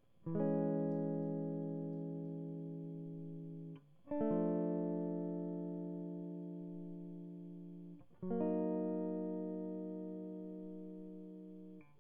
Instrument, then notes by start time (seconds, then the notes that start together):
electric guitar
0.28 E3
0.36 G#3
0.41 C#4
4.12 D4
4.21 A3
4.32 F3
8.24 F#3
8.31 A#3
8.41 D#4